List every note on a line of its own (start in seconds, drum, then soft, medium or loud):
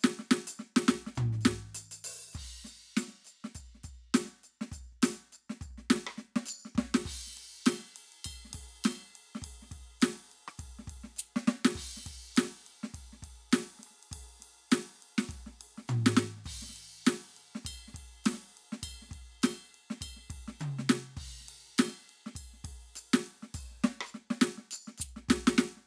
0.01 snare loud
0.01 percussion medium
0.20 snare medium
0.20 percussion soft
0.32 snare loud
0.48 percussion loud
0.60 snare medium
0.77 snare loud
0.89 kick soft
0.89 snare loud
1.07 snare medium
1.16 kick soft
1.16 floor tom loud
1.16 percussion medium
1.24 kick soft
1.27 kick soft
1.34 snare soft
1.42 percussion medium
1.46 kick soft
1.46 snare loud
1.76 percussion loud
1.92 percussion loud
2.05 percussion loud
2.10 kick soft
2.34 kick medium
2.34 percussion medium
2.34 crash medium
2.42 kick soft
2.46 kick soft
2.65 snare soft
2.65 percussion medium
2.98 snare medium
2.98 percussion loud
3.09 snare soft
3.26 percussion medium
3.28 percussion medium
3.45 snare medium
3.56 kick soft
3.56 percussion medium
3.75 snare soft
3.84 kick soft
3.84 percussion medium
4.15 snare loud
4.15 percussion loud
4.26 snare soft
4.44 percussion medium
4.62 snare medium
4.73 kick soft
4.73 percussion medium
4.79 kick soft
4.82 kick soft
4.93 kick soft
5.03 snare loud
5.03 percussion loud
5.13 snare soft
5.33 percussion soft
5.33 percussion medium
5.51 snare medium
5.62 kick soft
5.62 percussion medium
5.68 kick soft
5.71 kick soft
5.79 snare soft
5.91 snare loud
5.96 snare medium
6.08 high tom loud
6.19 snare medium
6.37 snare loud
6.47 percussion loud
6.50 percussion loud
6.66 snare soft
6.76 kick soft
6.76 snare loud
6.84 kick soft
6.95 snare loud
7.06 kick medium
7.06 crash loud
7.13 kick soft
7.17 kick soft
7.28 snare soft
7.31 snare soft
7.37 snare soft
7.37 ride medium
7.67 snare loud
7.67 ride bell loud
7.67 percussion medium
7.80 snare soft
7.97 ride medium
8.13 ride medium
8.25 kick soft
8.25 ride bell loud
8.25 percussion soft
8.35 kick soft
8.46 snare soft
8.51 snare soft
8.51 ride loud
8.55 kick soft
8.61 kick soft
8.85 snare loud
8.85 ride bell loud
8.85 percussion medium
9.16 ride medium
9.36 snare medium
9.42 kick soft
9.42 ride loud
9.42 percussion soft
9.63 snare soft
9.68 snare soft
9.72 kick soft
9.72 ride medium
9.78 kick soft
9.81 kick soft
10.01 snare loud
10.01 ride loud
10.01 percussion medium
10.13 snare soft
10.30 ride soft
10.30 percussion soft
10.49 cross-stick medium
10.59 kick soft
10.59 ride medium
10.59 percussion soft
10.66 kick soft
10.69 kick soft
10.80 snare soft
10.88 kick soft
10.88 ride medium
10.98 kick soft
11.05 snare soft
11.17 percussion medium
11.17 floor tom loud
11.37 snare medium
11.49 snare loud
11.66 snare loud
11.76 kick soft
11.76 crash loud
11.82 kick soft
11.98 snare soft
12.07 kick soft
12.07 ride medium
12.13 kick soft
12.16 kick soft
12.36 snare loud
12.36 ride loud
12.36 percussion medium
12.46 snare soft
12.68 ride medium
12.84 snare medium
12.95 kick soft
12.95 ride medium
13.13 snare soft
13.23 kick soft
13.23 ride medium
13.53 snare loud
13.53 ride loud
13.53 percussion medium
13.62 snare soft
13.80 snare soft
13.80 percussion soft
13.84 cross-stick soft
13.84 ride medium
13.91 snare soft
14.04 ride medium
14.11 kick soft
14.11 ride loud
14.11 percussion soft
14.18 kick soft
14.40 snare soft
14.40 ride medium
14.72 snare loud
14.72 ride loud
14.72 percussion medium
15.00 ride medium
15.00 percussion soft
15.19 snare loud
15.30 kick soft
15.30 ride medium
15.36 kick soft
15.39 kick soft
15.47 snare soft
15.62 ride medium
15.79 snare soft
15.89 floor tom loud
15.89 percussion medium
16.07 snare loud
16.18 snare loud
16.37 snare soft
16.45 kick soft
16.45 percussion soft
16.45 crash medium
16.53 kick soft
16.56 kick soft
16.63 snare soft
16.70 snare soft
16.77 ride medium
17.06 snare loud
17.06 ride loud
17.06 percussion medium
17.38 ride medium
17.56 snare medium
17.65 kick soft
17.65 ride bell loud
17.65 percussion soft
17.71 kick soft
17.74 kick soft
17.89 snare soft
17.95 kick soft
17.95 ride medium
18.03 kick soft
18.25 snare loud
18.25 ride loud
18.25 percussion medium
18.34 snare soft
18.58 ride medium
18.73 snare medium
18.84 kick soft
18.84 ride bell loud
18.89 kick soft
18.93 kick soft
19.03 snare soft
19.09 kick soft
19.09 snare soft
19.14 snare soft
19.14 ride medium
19.18 kick soft
19.43 snare loud
19.43 ride bell loud
19.43 percussion medium
19.53 snare soft
19.75 ride soft
19.91 snare medium
20.02 kick soft
20.02 snare soft
20.02 ride bell loud
20.08 kick soft
20.17 snare soft
20.31 kick soft
20.31 ride medium
20.38 kick soft
20.49 snare medium
20.61 mid tom loud
20.61 percussion medium
20.80 snare medium
20.90 snare loud
21.18 kick medium
21.18 crash medium
21.24 kick soft
21.27 kick soft
21.41 snare soft
21.45 snare soft
21.50 ride medium
21.79 snare loud
21.79 ride bell loud
21.79 percussion medium
21.89 snare soft
22.10 ride soft
22.27 snare medium
22.36 kick soft
22.36 ride bell medium
22.45 kick soft
22.54 snare soft
22.65 kick soft
22.65 ride loud
22.72 kick soft
22.97 ride medium
22.97 percussion loud
23.14 snare loud
23.27 ride medium
23.44 snare soft
23.55 kick medium
23.55 ride bell medium
23.55 percussion medium
23.72 snare soft
23.78 kick soft
23.85 snare loud
24.02 high tom loud
24.07 percussion medium
24.15 snare soft
24.31 snare medium
24.42 snare loud
24.42 percussion medium
24.59 snare soft
24.72 percussion loud
24.74 percussion loud
24.88 snare soft
24.99 kick soft
24.99 percussion loud
24.99 floor tom loud
25.17 snare soft
25.30 kick medium
25.30 snare loud
25.30 percussion medium
25.48 snare loud
25.59 snare loud
25.77 snare soft